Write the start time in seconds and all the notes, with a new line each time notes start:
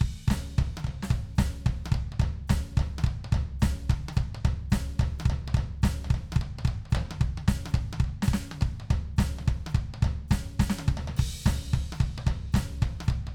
0.01 kick
0.28 kick, snare, hi-hat pedal
0.32 floor tom
0.58 kick, floor tom
0.77 hi-hat pedal, high tom
0.84 kick, floor tom
1.03 snare
1.10 kick, mid tom
1.35 kick, snare, floor tom, hi-hat pedal
1.66 kick, floor tom
1.85 hi-hat pedal, high tom
1.92 kick, mid tom
2.12 mid tom
2.20 kick, floor tom
2.48 kick, snare, floor tom, hi-hat pedal
2.77 kick, floor tom
2.98 hi-hat pedal, high tom
3.04 kick, mid tom
3.24 mid tom
3.32 kick, floor tom
3.59 kick, snare, floor tom, hi-hat pedal
3.90 kick, high tom
4.09 hi-hat pedal, high tom
4.17 kick, mid tom
4.35 mid tom
4.45 kick, floor tom
4.70 kick, snare, floor tom, hi-hat pedal
4.99 kick, floor tom
5.19 hi-hat pedal, high tom
5.25 kick
5.30 floor tom
5.48 mid tom
5.54 kick, floor tom
5.82 kick, snare, floor tom, hi-hat pedal
6.05 floor tom
6.10 kick
6.14 floor tom
6.32 kick, hi-hat pedal, high tom
6.41 mid tom
6.59 mid tom
6.65 kick, mid tom
6.85 mid tom
6.90 kick, hi-hat pedal
6.95 floor tom
7.11 high tom
7.21 kick, mid tom
7.38 high tom
7.48 kick, snare
7.66 hi-hat pedal, high tom
7.74 kick, mid tom
7.93 high tom
8.00 kick
8.04 mid tom
8.22 snare
8.27 kick, hi-hat pedal
8.33 snare
8.51 high tom
8.61 kick, mid tom
8.80 mid tom
8.90 kick, floor tom
9.17 kick, snare, floor tom, hi-hat pedal
9.39 floor tom
9.48 kick, floor tom
9.66 hi-hat pedal, high tom
9.75 kick, mid tom
9.94 mid tom
10.02 kick, floor tom
10.28 kick, snare, hi-hat pedal
10.32 mid tom
10.59 kick, snare
10.67 snare, hi-hat pedal
10.79 high tom
10.88 kick
10.97 floor tom
11.08 floor tom
11.17 kick, ride
11.43 kick, snare, hi-hat pedal
11.48 floor tom
11.73 kick, floor tom
11.92 hi-hat pedal, high tom
12.00 kick, mid tom
12.18 mid tom
12.27 kick, floor tom
12.52 kick, snare, hi-hat pedal
12.57 floor tom
12.82 kick, floor tom
13.00 hi-hat pedal, high tom
13.08 kick, mid tom
13.27 mid tom